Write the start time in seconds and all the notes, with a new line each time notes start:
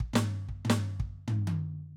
0.00 kick
0.13 snare, floor tom
0.49 kick
0.65 floor tom
0.70 snare
1.00 kick
1.28 floor tom
1.47 high tom